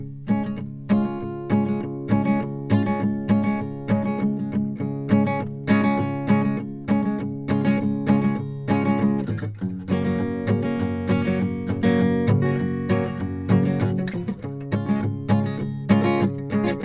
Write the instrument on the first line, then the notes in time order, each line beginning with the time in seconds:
acoustic guitar
0.01 C#3 G#3
0.29 G#3 C#4
0.44 G#3 C#4 F4
0.57 C#3 G#3
0.91 G#3 C#4 F4
1.04 G#3 C#4
1.22 C#3 G#3
1.51 C#3 G#3 C#4
1.65 C#4
1.70 G#3
1.82 C#3 A3
2.10 C#3 G#3 C#4
2.23 C#4 F4
2.29 G#3
2.41 C#3 G#3
2.72 G#3 C#4 F4
2.84 C#4 F4
2.89 G#3
3.01 C#3 G#3
3.30 G#3 C#4 F4
3.44 C#4
3.48 G#3
3.61 C#3 G#3
3.89 C#3 G#3 C#4
4.06 G#3 C#4
4.14 F4
4.19 C#3 G#3
4.38 G#3
4.53 C#3 G#3
4.80 C#3 A3
5.10 C#3 G#3 C#4
5.26 G#3 C#4
5.41 C#3 G#3
5.69 C#3 G#3 C#4
5.73 F4
5.82 G#3 C#4 F4
5.99 C#3 G#3 C#4
6.28 C#3 G#3 C#4
6.43 G#3 C#4
6.58 C#3 G#3
6.89 C#3 G#3 C#4
7.03 C#4
7.07 G#3
7.20 C#3 A3
7.49 C#3 G#3 C#4
7.54 F4
7.63 C#4 F4
7.68 G#3
7.79 C#3
7.85 G#3
8.08 C#3 G#3 C#4 F4
8.22 G#3 C#4 F4
8.37 C#3 G#3
8.69 C#3 G#3 C#4
8.73 F4
8.83 F4
8.87 G#3 C#4
9.00 C#3 G#3
9.29 E2
9.60 F#2 B2
9.71 C#3
9.89 F#2 C#3 F#3
9.93 A#3 C#4
10.04 F#3 A#3 C#4
10.17 F#2 C#3
10.48 C#3 F#3 A#3 C#4
10.64 A#3 C#4
10.80 F#2 C#3
11.09 C#3 F#3 A#3 C#4
11.23 A#3 C#4
11.28 F#3
11.41 F#2 C#3 F#3
11.68 F#2 C#3 F#3
11.84 C#3 F#3 A#3
11.99 F#2 C#3 F#3
12.29 C#3 F#3 A#3 C#4
12.43 A#3 C#4 F#4
12.53 F#4
12.61 F#2 C#3
12.90 F#3 A#3 C#4
13.03 A#3 C#4
13.09 F#3
13.19 F#2 C#3 F#3
13.50 F#2 C#3 A#3 F#4
13.64 F#3 A#3 C#4
13.81 F#2 C#3 F#3
14.00 F#3
14.09 C#3
14.14 F3
14.31 F#3
14.44 C#3 G#3
14.73 G#3 C#4 F4
14.87 G#3 C#4
14.99 C#3 G#3
15.30 C#3 G#3 C#4 F4
15.43 C#4 F4
15.47 G#3
15.62 C#3 G#3 A#4
15.90 G#3 C#4 F4 A#4
16.02 C#4 F4 A#4
16.21 C#3 G3
16.51 C#3 G#3
16.65 C#4 F4